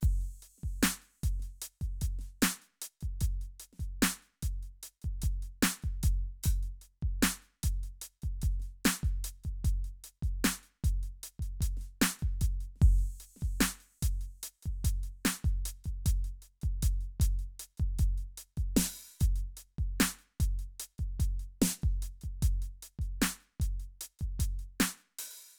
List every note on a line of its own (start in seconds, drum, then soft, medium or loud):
0.01 kick medium
0.01 hi-hat pedal medium
0.01 crash medium
0.21 closed hi-hat soft
0.42 closed hi-hat medium
0.58 snare soft
0.63 kick soft
0.83 closed hi-hat loud
0.83 snare loud
1.02 closed hi-hat soft
1.23 kick medium
1.23 closed hi-hat loud
1.40 snare soft
1.40 closed hi-hat soft
1.62 closed hi-hat loud
1.81 kick soft
1.81 closed hi-hat soft
2.01 closed hi-hat medium
2.01 kick medium
2.19 snare soft
2.19 closed hi-hat soft
2.42 closed hi-hat loud
2.42 snare loud
2.62 closed hi-hat soft
2.82 closed hi-hat loud
3.01 kick soft
3.01 closed hi-hat soft
3.21 kick medium
3.21 closed hi-hat loud
3.41 closed hi-hat soft
3.60 closed hi-hat loud
3.73 snare soft
3.80 kick soft
3.80 closed hi-hat soft
4.02 closed hi-hat medium
4.02 snare loud
4.22 closed hi-hat soft
4.43 closed hi-hat medium
4.43 kick medium
4.63 closed hi-hat soft
4.83 closed hi-hat loud
5.02 kick soft
5.02 closed hi-hat soft
5.22 closed hi-hat loud
5.22 kick medium
5.42 closed hi-hat soft
5.62 closed hi-hat medium
5.62 snare loud
5.82 kick soft
5.82 closed hi-hat soft
6.03 closed hi-hat loud
6.03 kick medium
6.43 open hi-hat loud
6.43 kick medium
6.43 hi-hat pedal medium
6.63 closed hi-hat soft
6.81 closed hi-hat medium
7.02 kick medium
7.02 closed hi-hat soft
7.11 kick soft
7.23 closed hi-hat loud
7.23 snare loud
7.42 closed hi-hat soft
7.63 closed hi-hat loud
7.63 kick medium
7.83 closed hi-hat soft
8.02 closed hi-hat loud
8.22 kick soft
8.22 closed hi-hat soft
8.42 closed hi-hat medium
8.42 kick medium
8.42 snare soft
8.60 snare soft
8.60 closed hi-hat soft
8.85 closed hi-hat medium
8.85 snare loud
9.03 kick medium
9.03 closed hi-hat soft
9.24 closed hi-hat loud
9.44 kick soft
9.44 closed hi-hat soft
9.65 closed hi-hat medium
9.65 kick medium
9.84 closed hi-hat soft
10.04 closed hi-hat medium
10.23 kick medium
10.23 closed hi-hat soft
10.44 closed hi-hat loud
10.44 snare loud
10.63 closed hi-hat soft
10.84 closed hi-hat medium
10.84 kick medium
11.03 closed hi-hat soft
11.23 closed hi-hat loud
11.39 kick soft
11.39 closed hi-hat medium
11.61 closed hi-hat loud
11.61 kick medium
11.77 snare soft
11.81 closed hi-hat soft
12.02 closed hi-hat loud
12.02 snare loud
12.19 kick medium
12.19 closed hi-hat soft
12.41 closed hi-hat loud
12.41 kick medium
12.61 closed hi-hat soft
12.76 snare soft
12.82 kick loud
12.82 crash medium
12.98 closed hi-hat soft
13.20 closed hi-hat medium
13.36 snare soft
13.41 kick medium
13.41 closed hi-hat soft
13.61 closed hi-hat loud
13.61 snare loud
13.80 closed hi-hat soft
14.03 closed hi-hat loud
14.03 kick medium
14.21 closed hi-hat soft
14.43 closed hi-hat loud
14.63 kick soft
14.63 closed hi-hat medium
14.84 closed hi-hat loud
14.84 kick medium
15.03 closed hi-hat medium
15.25 closed hi-hat loud
15.25 snare loud
15.44 kick medium
15.44 closed hi-hat soft
15.65 closed hi-hat loud
15.84 kick soft
15.84 closed hi-hat soft
16.06 closed hi-hat loud
16.06 kick medium
16.24 closed hi-hat soft
16.42 closed hi-hat medium
16.62 kick medium
16.62 closed hi-hat soft
16.83 closed hi-hat loud
16.83 kick medium
17.01 closed hi-hat soft
17.20 closed hi-hat loud
17.20 kick medium
17.39 closed hi-hat soft
17.60 closed hi-hat loud
17.77 kick medium
17.77 closed hi-hat soft
17.99 closed hi-hat medium
17.99 kick medium
18.18 closed hi-hat soft
18.38 closed hi-hat medium
18.57 kick medium
18.57 closed hi-hat soft
18.77 open hi-hat loud
18.77 snare loud
19.20 kick medium
19.20 closed hi-hat loud
19.20 hi-hat pedal medium
19.36 closed hi-hat soft
19.57 closed hi-hat medium
19.78 kick medium
19.78 closed hi-hat soft
20.00 closed hi-hat loud
20.00 snare loud
20.19 closed hi-hat soft
20.40 kick medium
20.40 closed hi-hat loud
20.59 closed hi-hat soft
20.80 closed hi-hat loud
20.98 kick soft
20.98 closed hi-hat soft
21.20 kick medium
21.20 closed hi-hat loud
21.39 closed hi-hat soft
21.62 closed hi-hat loud
21.62 snare loud
21.82 kick medium
21.82 closed hi-hat soft
22.02 closed hi-hat medium
22.21 kick soft
22.21 closed hi-hat soft
22.42 kick medium
22.42 closed hi-hat loud
22.62 closed hi-hat medium
22.83 closed hi-hat loud
22.99 kick soft
22.99 closed hi-hat soft
23.22 closed hi-hat medium
23.22 snare loud
23.40 closed hi-hat soft
23.60 kick medium
23.60 closed hi-hat medium
23.80 closed hi-hat soft
24.01 closed hi-hat loud
24.19 kick soft
24.19 closed hi-hat soft
24.40 closed hi-hat loud
24.40 kick medium
24.59 closed hi-hat soft
24.80 closed hi-hat loud
24.80 snare loud
24.98 closed hi-hat soft
25.19 open hi-hat loud